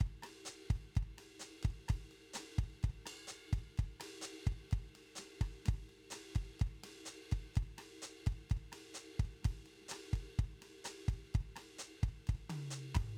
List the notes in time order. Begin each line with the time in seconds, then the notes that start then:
0.01 kick, ride
0.07 kick
0.23 cross-stick, snare, ride
0.46 hi-hat pedal, ride
0.71 kick, ride
0.76 kick
0.96 kick, ride
1.03 kick
1.18 cross-stick, ride
1.40 snare, hi-hat pedal, ride
1.63 kick, snare, ride
1.70 kick
1.87 kick, cross-stick, hi-hat pedal, ride
1.96 kick
2.12 ride
2.34 cross-stick, snare, hi-hat pedal, ride
2.59 kick, ride
2.64 kick
2.83 kick, ride
2.90 kick
3.06 cross-stick, snare, ride bell
3.28 hi-hat pedal
3.32 ride
3.53 kick, ride
3.58 kick
3.78 kick, ride
3.84 kick
4.00 cross-stick, snare, ride
4.22 hi-hat pedal, ride
4.47 kick, ride
4.52 kick
4.72 kick, ride
4.78 kick
4.95 snare, ride
5.16 snare, hi-hat pedal, ride
5.41 kick, cross-stick, snare, ride
5.53 snare
5.66 kick, snare, ride
5.75 kick
5.90 ride
6.11 cross-stick, snare, hi-hat pedal, ride
6.36 kick, ride
6.60 kick, ride
6.67 kick
6.84 snare, ride
7.06 hi-hat pedal, ride
7.32 kick, ride
7.54 kick, hi-hat pedal, ride
7.63 kick
7.79 cross-stick, ride
8.02 hi-hat pedal, ride
8.27 kick, ride
8.32 kick
8.50 kick, ride
8.57 kick
8.73 cross-stick, ride
8.95 hi-hat pedal, ride
9.20 kick, ride
9.25 kick
9.44 kick, snare, ride
9.51 kick
9.66 ride
9.81 snare
9.89 cross-stick, hi-hat pedal, ride
10.13 kick, ride
10.39 kick, ride
10.45 kick
10.62 cross-stick, ride
10.85 cross-stick, hi-hat pedal, ride
11.09 kick, ride
11.14 kick
11.35 kick, ride
11.41 kick
11.56 cross-stick, snare, ride
11.79 hi-hat pedal, ride
12.02 kick, mid tom, ride
12.09 kick
12.28 kick, ride
12.35 kick
12.50 high tom, ride
12.71 hi-hat pedal, ride
12.95 kick, mid tom, ride
13.02 kick